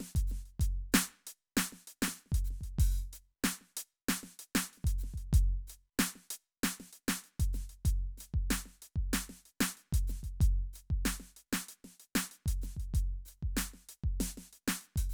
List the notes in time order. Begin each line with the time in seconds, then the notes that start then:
0.01 snare
0.16 open hi-hat, kick
0.28 hi-hat pedal
0.32 snare
0.46 closed hi-hat
0.60 open hi-hat, kick
0.93 snare, hi-hat pedal
1.09 snare
1.28 closed hi-hat
1.58 snare
1.73 snare
1.88 closed hi-hat
2.03 snare
2.09 snare
2.20 closed hi-hat
2.27 snare
2.33 open hi-hat, kick
2.45 hi-hat pedal
2.51 snare
2.62 kick, closed hi-hat
2.79 open hi-hat, kick
3.13 open hi-hat, hi-hat pedal
3.45 snare, closed hi-hat
3.62 snare
3.78 closed hi-hat
4.09 snare, closed hi-hat
4.24 snare
4.40 closed hi-hat
4.56 snare
4.74 closed hi-hat
4.78 snare
4.85 open hi-hat, kick
4.99 hi-hat pedal
5.04 snare
5.15 kick, closed hi-hat
5.34 open hi-hat, kick
5.68 closed hi-hat, hi-hat pedal
6.00 snare, closed hi-hat
6.16 snare
6.31 closed hi-hat
6.64 snare, closed hi-hat
6.81 snare
6.94 closed hi-hat
7.09 snare
7.25 closed hi-hat
7.40 open hi-hat, kick
7.54 snare, hi-hat pedal
7.70 kick, closed hi-hat
7.86 open hi-hat, kick
8.06 kick
8.18 snare, closed hi-hat, hi-hat pedal
8.35 kick
8.51 closed hi-hat, snare
8.66 snare
8.83 closed hi-hat
8.97 kick
9.14 closed hi-hat, snare
9.30 snare
9.46 closed hi-hat
9.61 snare
9.78 closed hi-hat
9.93 open hi-hat, kick
10.08 snare, hi-hat pedal
10.24 kick, closed hi-hat
10.41 open hi-hat, kick
10.74 closed hi-hat, hi-hat pedal
10.91 kick
11.06 snare, closed hi-hat
11.21 snare
11.37 closed hi-hat
11.54 snare
11.69 closed hi-hat
11.85 snare
12.01 closed hi-hat
12.16 snare
12.32 closed hi-hat
12.47 open hi-hat, kick
12.62 snare, hi-hat pedal
12.77 kick, closed hi-hat
12.95 open hi-hat, kick
13.26 closed hi-hat, hi-hat pedal
13.43 kick
13.57 closed hi-hat, snare
13.74 snare
13.90 closed hi-hat
14.04 kick
14.21 closed hi-hat, snare
14.38 snare
14.54 closed hi-hat
14.69 snare
14.82 closed hi-hat
14.97 kick, open hi-hat
15.10 hi-hat pedal